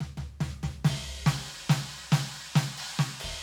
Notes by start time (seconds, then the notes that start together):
0.00 snare, floor tom
0.17 snare, floor tom
0.41 snare, floor tom
0.63 snare, floor tom
0.85 snare, ride
1.26 snare, crash
1.48 crash
1.69 snare, crash
1.90 crash
2.12 snare, crash
2.34 crash
2.56 snare, crash
2.78 crash
2.99 snare
3.20 kick, ride